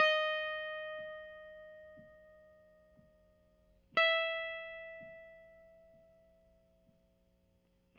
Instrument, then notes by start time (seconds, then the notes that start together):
electric guitar
0.00 D#5
3.97 E5